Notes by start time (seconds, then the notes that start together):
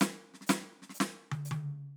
0.00 snare, hi-hat pedal
0.34 snare
0.41 snare
0.47 snare, hi-hat pedal
0.82 snare
0.89 snare
0.94 hi-hat pedal
1.00 snare
1.31 high tom
1.45 hi-hat pedal
1.51 high tom